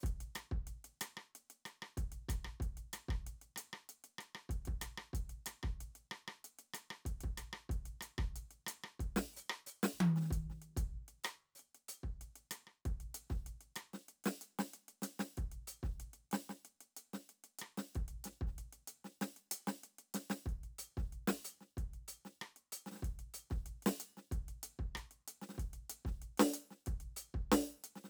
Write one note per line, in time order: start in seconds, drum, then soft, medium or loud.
0.01 kick medium
0.01 hi-hat pedal soft
0.06 closed hi-hat soft
0.21 closed hi-hat soft
0.36 cross-stick medium
0.36 closed hi-hat medium
0.52 kick medium
0.67 closed hi-hat soft
0.85 closed hi-hat soft
1.01 cross-stick medium
1.01 closed hi-hat medium
1.17 cross-stick medium
1.35 closed hi-hat soft
1.50 closed hi-hat soft
1.66 cross-stick medium
1.66 closed hi-hat soft
1.82 cross-stick medium
1.97 kick medium
1.97 closed hi-hat soft
2.12 closed hi-hat soft
2.29 kick medium
2.29 cross-stick medium
2.29 closed hi-hat medium
2.45 cross-stick medium
2.60 kick medium
2.60 closed hi-hat soft
2.77 closed hi-hat soft
2.93 cross-stick medium
2.93 closed hi-hat medium
3.09 kick medium
3.09 cross-stick medium
3.27 closed hi-hat soft
3.42 closed hi-hat soft
3.56 cross-stick medium
3.56 closed hi-hat medium
3.73 cross-stick medium
3.89 closed hi-hat medium
4.04 closed hi-hat soft
4.19 cross-stick medium
4.19 closed hi-hat soft
4.35 cross-stick medium
4.49 kick medium
4.49 closed hi-hat soft
4.65 kick medium
4.65 closed hi-hat soft
4.82 cross-stick medium
4.82 closed hi-hat medium
4.98 cross-stick medium
5.13 kick medium
5.13 closed hi-hat medium
5.30 closed hi-hat soft
5.46 cross-stick medium
5.46 closed hi-hat medium
5.63 kick medium
5.63 cross-stick medium
5.81 closed hi-hat soft
5.95 closed hi-hat soft
6.11 cross-stick medium
6.28 cross-stick medium
6.45 closed hi-hat medium
6.59 closed hi-hat soft
6.74 cross-stick medium
6.74 closed hi-hat medium
6.91 cross-stick medium
7.06 kick medium
7.06 closed hi-hat soft
7.21 kick medium
7.21 closed hi-hat soft
7.38 cross-stick medium
7.38 closed hi-hat medium
7.53 cross-stick medium
7.70 kick medium
7.70 closed hi-hat soft
7.86 closed hi-hat soft
8.01 cross-stick medium
8.01 closed hi-hat medium
8.18 kick medium
8.18 cross-stick medium
8.36 closed hi-hat medium
8.51 closed hi-hat soft
8.67 cross-stick medium
8.67 closed hi-hat medium
8.84 cross-stick medium
9.00 kick medium
9.00 closed hi-hat soft
9.16 snare medium
9.34 hi-hat pedal medium
9.34 open hi-hat soft
9.50 cross-stick medium
9.67 hi-hat pedal medium
9.83 snare medium
9.93 kick soft
10.01 high tom loud
10.16 snare soft
10.21 snare soft
10.25 snare soft
10.28 kick medium
10.28 snare soft
10.33 closed hi-hat medium
10.50 snare soft
10.62 closed hi-hat soft
10.77 kick medium
10.77 closed hi-hat medium
11.08 closed hi-hat soft
11.24 closed hi-hat medium
11.24 cross-stick medium
11.55 hi-hat pedal soft
11.59 closed hi-hat soft
11.75 closed hi-hat soft
11.89 closed hi-hat medium
12.04 kick soft
12.21 closed hi-hat soft
12.36 closed hi-hat soft
12.51 cross-stick medium
12.51 closed hi-hat medium
12.67 cross-stick soft
12.85 kick medium
12.85 closed hi-hat soft
13.00 closed hi-hat soft
13.15 closed hi-hat medium
13.30 kick medium
13.30 snare soft
13.46 closed hi-hat soft
13.61 closed hi-hat soft
13.76 cross-stick medium
13.76 closed hi-hat medium
13.94 snare soft
14.09 closed hi-hat soft
14.24 snare medium
14.24 closed hi-hat soft
14.41 closed hi-hat medium
14.59 snare medium
14.74 closed hi-hat soft
14.88 closed hi-hat soft
15.02 snare medium
15.02 closed hi-hat medium
15.20 snare medium
15.37 kick medium
15.37 closed hi-hat soft
15.52 closed hi-hat soft
15.68 closed hi-hat medium
15.83 kick medium
15.83 snare soft
16.00 closed hi-hat soft
16.14 closed hi-hat soft
16.32 snare medium
16.32 closed hi-hat soft
16.50 snare soft
16.65 closed hi-hat soft
16.81 closed hi-hat soft
16.97 closed hi-hat medium
17.14 snare soft
17.29 closed hi-hat soft
17.44 closed hi-hat soft
17.59 cross-stick medium
17.59 closed hi-hat medium
17.78 snare medium
17.95 kick medium
17.95 closed hi-hat soft
18.08 closed hi-hat soft
18.24 snare soft
18.24 closed hi-hat medium
18.41 kick medium
18.47 snare soft
18.58 closed hi-hat soft
18.73 closed hi-hat soft
18.88 closed hi-hat medium
19.05 snare soft
19.21 snare medium
19.21 closed hi-hat soft
19.37 closed hi-hat soft
19.51 closed hi-hat loud
19.67 snare medium
19.84 closed hi-hat soft
19.99 closed hi-hat soft
20.14 snare medium
20.14 closed hi-hat medium
20.30 snare medium
20.46 kick medium
20.46 closed hi-hat soft
20.64 closed hi-hat soft
20.79 closed hi-hat medium
20.97 kick medium
20.97 snare soft
21.13 closed hi-hat soft
21.28 snare medium
21.28 closed hi-hat soft
21.45 closed hi-hat medium
21.61 snare soft
21.77 kick medium
21.77 closed hi-hat soft
21.94 closed hi-hat soft
22.08 closed hi-hat medium
22.25 snare soft
22.42 cross-stick medium
22.42 closed hi-hat soft
22.56 closed hi-hat soft
22.72 closed hi-hat medium
22.86 snare soft
22.92 snare soft
22.95 snare soft
22.98 snare soft
23.03 kick medium
23.03 snare soft
23.03 closed hi-hat soft
23.19 closed hi-hat soft
23.34 closed hi-hat medium
23.50 kick medium
23.50 snare soft
23.66 closed hi-hat soft
23.83 snare loud
23.83 closed hi-hat soft
24.00 closed hi-hat medium
24.17 snare soft
24.32 kick medium
24.32 closed hi-hat soft
24.48 closed hi-hat soft
24.63 closed hi-hat medium
24.79 kick medium
24.95 cross-stick medium
24.95 closed hi-hat soft
25.11 closed hi-hat soft
25.28 closed hi-hat medium
25.42 snare soft
25.49 snare soft
25.54 kick medium
25.54 snare soft
25.60 closed hi-hat soft
25.73 closed hi-hat soft
25.90 closed hi-hat medium
26.05 kick medium
26.05 snare soft
26.22 closed hi-hat soft
26.38 snare medium
26.38 closed hi-hat soft
26.54 closed hi-hat medium
26.71 snare soft
26.86 kick medium
26.86 closed hi-hat soft
27.00 closed hi-hat soft
27.17 closed hi-hat medium
27.34 kick medium
27.52 snare medium
27.52 closed hi-hat soft
27.68 closed hi-hat soft
27.84 closed hi-hat medium
27.96 snare soft
28.04 snare soft